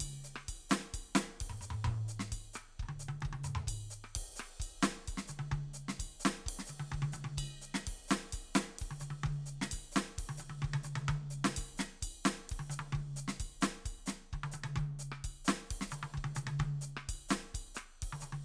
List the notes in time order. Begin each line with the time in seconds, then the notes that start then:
0.01 kick, ride bell
0.25 hi-hat pedal
0.36 cross-stick
0.49 kick, ride bell
0.70 snare, hi-hat pedal
0.80 snare
0.94 kick, ride bell
1.16 snare, hi-hat pedal
1.41 kick, ride
1.47 kick, mid tom
1.62 hi-hat pedal, mid tom
1.71 mid tom
1.85 kick, mid tom
1.95 mid tom
2.09 hi-hat pedal
2.20 snare
2.32 kick, ride bell
2.54 cross-stick, hi-hat pedal
2.80 kick, mid tom
2.89 high tom
3.00 hi-hat pedal
3.09 high tom
3.21 high tom, crash
3.25 kick
3.33 high tom
3.44 hi-hat pedal, mid tom
3.56 mid tom
3.68 kick, ride bell
3.91 hi-hat pedal
4.05 cross-stick
4.16 kick, ride
4.22 kick
4.36 cross-stick, hi-hat pedal
4.60 kick, ride bell
4.83 snare, hi-hat pedal
5.08 kick, ride bell
5.18 snare
5.28 hi-hat pedal, high tom
5.40 high tom
5.52 kick, high tom
5.74 hi-hat pedal
5.89 snare
6.00 kick, ride bell
6.07 kick
6.20 hi-hat pedal
6.26 snare
6.47 kick, ride
6.59 snare
6.67 hi-hat pedal, high tom
6.80 high tom
6.92 kick, high tom
7.00 kick, high tom
7.13 hi-hat pedal, high tom
7.25 high tom
7.38 kick, ride bell
7.61 hi-hat pedal, ride
7.75 snare
7.87 kick, ride
8.09 snare, hi-hat pedal
8.33 kick, ride bell
8.41 kick
8.55 snare, hi-hat pedal
8.79 kick, ride
8.91 high tom
9.00 hi-hat pedal, high tom
9.11 high tom
9.24 kick, high tom
9.46 hi-hat pedal
9.62 snare
9.72 kick, ride bell
9.92 hi-hat pedal
9.97 snare
10.19 kick, ride
10.24 kick
10.30 high tom
10.38 hi-hat pedal, high tom
10.50 high tom
10.63 kick, high tom
10.74 high tom
10.84 hi-hat pedal, high tom
10.96 high tom
11.09 kick, high tom
11.31 hi-hat pedal
11.45 snare
11.57 kick, ride bell
11.78 snare, hi-hat pedal
12.03 kick, ride bell
12.25 snare, hi-hat pedal
12.50 kick, ride
12.60 high tom
12.70 hi-hat pedal, high tom
12.80 high tom
12.93 kick, high tom
13.17 hi-hat pedal
13.28 snare
13.40 kick, ride bell
13.62 snare, hi-hat pedal
13.86 kick, ride bell
14.07 snare, hi-hat pedal
14.33 kick, high tom
14.44 high tom
14.52 hi-hat pedal, high tom
14.64 high tom
14.76 kick, high tom
15.00 hi-hat pedal
15.12 cross-stick
15.25 kick, ride bell
15.31 kick
15.45 snare, hi-hat pedal
15.66 hi-hat pedal
15.71 kick, ride
15.82 snare
15.91 hi-hat pedal, high tom
16.03 high tom
16.14 kick, high tom
16.25 high tom
16.36 hi-hat pedal, high tom
16.47 high tom
16.60 kick, high tom
16.82 hi-hat pedal
16.97 cross-stick
17.09 kick, ride bell
17.29 snare, hi-hat pedal
17.55 kick, ride bell
17.62 kick
17.75 cross-stick, hi-hat pedal
18.03 kick, ride
18.13 high tom
18.21 hi-hat pedal, high tom
18.33 high tom